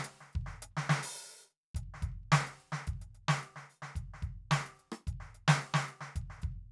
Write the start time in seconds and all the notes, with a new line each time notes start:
0.01 closed hi-hat, hi-hat pedal
0.21 snare
0.33 kick, closed hi-hat
0.41 kick
0.46 snare
0.62 closed hi-hat
0.77 snare
0.89 snare
1.03 open hi-hat
1.42 hi-hat pedal
1.50 closed hi-hat
1.75 closed hi-hat, kick
1.80 kick
1.83 kick
1.94 snare
1.97 snare
2.02 closed hi-hat, kick, snare
2.09 kick
2.12 kick
2.23 kick
2.32 closed hi-hat, snare
2.43 closed hi-hat, snare
2.60 closed hi-hat
2.72 snare
2.87 closed hi-hat, kick
2.93 kick
3.02 closed hi-hat
3.15 closed hi-hat
3.28 snare
3.43 closed hi-hat
3.56 snare
3.70 open hi-hat
3.82 snare
3.96 closed hi-hat, kick
4.14 snare
4.22 kick, snare, closed hi-hat
4.51 closed hi-hat, snare
4.61 snare
4.66 open hi-hat
4.75 hi-hat pedal
4.79 closed hi-hat
4.92 cross-stick
5.07 closed hi-hat, kick
5.13 kick
5.20 snare
5.26 snare
5.35 closed hi-hat
5.48 snare
5.62 closed hi-hat
5.74 snare
5.78 snare
5.88 closed hi-hat
6.01 snare
6.16 closed hi-hat, kick
6.21 kick
6.30 snare
6.38 closed hi-hat, snare
6.43 kick
6.52 kick